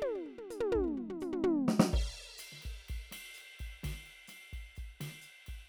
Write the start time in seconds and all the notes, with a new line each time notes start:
0.01 high tom
0.14 high tom
0.25 mid tom
0.37 mid tom
0.49 hi-hat pedal, mid tom
0.59 mid tom
0.71 kick, mid tom
0.79 kick, mid tom
0.87 mid tom
0.96 floor tom
1.09 floor tom
1.20 floor tom, hi-hat pedal
1.32 floor tom
1.43 floor tom
1.67 snare
1.79 snare
1.92 kick, crash
1.99 kick
2.38 hi-hat pedal, ride
2.51 snare
2.62 kick, ride
2.84 hi-hat pedal, ride
2.89 kick
2.94 kick
3.11 snare, ride
3.33 hi-hat pedal, ride
3.58 kick, ride
3.82 kick, snare, ride
3.89 kick
4.05 ride
4.27 snare, hi-hat pedal, ride
4.52 kick, ride
4.75 kick, hi-hat pedal, ride
5.00 snare, ride
5.21 hi-hat pedal, ride
5.46 kick, ride